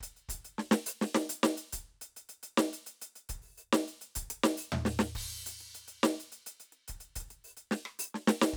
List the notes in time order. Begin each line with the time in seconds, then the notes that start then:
0.01 closed hi-hat, kick
0.17 closed hi-hat
0.29 closed hi-hat, kick
0.35 kick
0.45 closed hi-hat
0.59 snare
0.72 snare
0.87 open hi-hat, hi-hat pedal
1.02 snare
1.15 snare
1.30 closed hi-hat
1.44 snare
1.58 closed hi-hat
1.73 closed hi-hat, kick
2.02 closed hi-hat
2.17 closed hi-hat
2.29 closed hi-hat
2.43 closed hi-hat
2.58 snare
2.74 closed hi-hat
2.87 closed hi-hat
3.00 closed hi-hat, hi-hat pedal
3.16 open hi-hat
3.30 closed hi-hat, kick
3.36 kick
3.39 open hi-hat, kick
3.58 open hi-hat, hi-hat pedal
3.73 snare
3.88 closed hi-hat
4.02 closed hi-hat
4.16 closed hi-hat, kick
4.23 kick
4.31 closed hi-hat
4.44 snare
4.58 open hi-hat
4.73 floor tom
4.86 snare
5.00 snare
5.16 kick, crash
5.24 kick
5.47 closed hi-hat
5.61 closed hi-hat
5.75 closed hi-hat
5.88 closed hi-hat
6.04 snare
6.20 closed hi-hat
6.32 closed hi-hat
6.47 closed hi-hat
6.60 closed hi-hat
6.73 closed hi-hat
6.88 closed hi-hat, kick
7.01 closed hi-hat
7.16 closed hi-hat, kick
7.21 closed hi-hat
7.28 hi-hat pedal, open hi-hat
7.45 open hi-hat
7.52 hi-hat pedal
7.57 closed hi-hat
7.72 snare
7.86 cross-stick
8.00 open hi-hat
8.15 snare
8.28 snare
8.42 snare
8.48 hi-hat pedal
8.54 kick